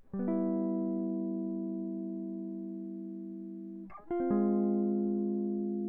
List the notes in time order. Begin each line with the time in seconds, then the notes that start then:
0.15 G3
0.20 B3
0.28 E4
4.11 F4
4.21 C4
4.32 G#3